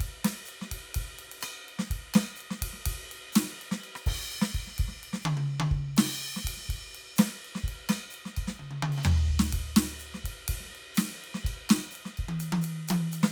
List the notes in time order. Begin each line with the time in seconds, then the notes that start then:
0.01 kick, ride
0.09 kick
0.26 snare, ride
0.46 hi-hat pedal, ride
0.63 snare
0.72 kick, ride
0.96 kick, ride
1.03 kick
1.15 kick
1.20 ride
1.33 ride
1.42 cross-stick, hi-hat pedal, ride bell
1.69 ride
1.80 snare
1.91 kick, ride
2.15 snare, ride bell
2.37 hi-hat pedal
2.42 ride
2.52 snare
2.63 kick, ride
2.74 snare
2.79 snare
2.82 snare
2.86 kick, snare, ride
2.95 kick
3.12 ride
3.33 snare, hi-hat pedal, ride
3.62 ride
3.73 snare
3.85 ride bell
3.96 cross-stick
4.05 kick, hi-hat pedal, crash
4.13 kick
4.20 kick
4.33 ride bell
4.43 snare
4.55 kick, ride bell
4.68 snare
4.79 kick, ride
4.87 kick, snare
5.04 ride
5.14 snare
5.23 hi-hat pedal, mid tom
5.38 mid tom
5.61 mid tom
5.72 kick
5.79 kick
5.82 kick
5.94 kick, crash
5.99 snare
6.18 hi-hat pedal
6.37 snare
6.44 kick, hi-hat pedal
6.48 ride
6.58 snare
6.62 snare
6.66 snare
6.68 kick, snare, ride
6.76 kick
6.78 kick
6.96 ride
7.17 snare, hi-hat pedal, ride
7.29 snare
7.46 ride
7.56 snare
7.65 kick, hi-hat pedal
7.69 kick, ride
7.90 snare, ride bell
8.11 hi-hat pedal, ride
8.26 snare
8.38 kick, ride bell
8.46 kick, snare
8.60 kick, mid tom
8.72 mid tom
8.84 mid tom
8.93 ride
8.99 mid tom
9.04 hi-hat pedal, floor tom
9.17 cross-stick
9.30 kick
9.40 snare
9.54 kick, ride
9.61 kick
9.77 snare, ride
10.00 hi-hat pedal, ride
10.15 snare
10.25 kick, ride
10.49 kick, ride
10.61 snare
10.65 snare
10.68 snare
10.76 ride
10.96 snare, hi-hat pedal, ride
11.25 ride
11.35 snare
11.46 kick, hi-hat pedal, ride bell
11.52 kick
11.70 snare, ride bell
11.92 hi-hat pedal
11.96 ride
12.06 snare
12.18 kick, ride bell
12.30 high tom
12.41 hi-hat pedal, ride
12.53 high tom
12.63 hi-hat pedal, ride
12.89 hi-hat pedal, high tom, ride
13.13 hi-hat pedal, ride
13.24 snare